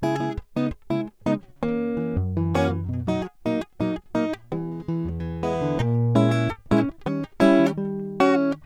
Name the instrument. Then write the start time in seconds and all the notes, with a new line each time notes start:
acoustic guitar
0.01 C#3 G#3 A#3 E4 G#4
0.21 G#3 A#3 E4
0.57 C#3 G#3 B3 D#4
0.91 C#3 G#3 A#3 E4
1.27 C#3 G#3 B3 D#4
1.63 E3 A#3 C#4
1.98 E3
2.18 F#2
2.37 E3
2.55 A#3 C#4 F#4
2.70 E3
2.90 B2
3.09 B2 F#3 D#4 F#4
3.46 A#2 F#3 A#3 D#4
3.81 A#2 F#3 A#3 D#4
4.16 A2 F#3 A#3 D#4
4.52 E3 C4
4.62 G3
4.89 E3
5.07 E2
5.21 E3
5.44 B3 E4
5.54 B3
5.63 D3
5.81 A#2
6.16 G#3 C#4 E4
6.32 G#3 E4
6.72 A#2 G#3 C#4 E4
7.07 D#3 G3 C#4
7.41 G3 C#4 E4
7.61 D#3
7.79 G3
8.21 C#4 F#4
8.36 E4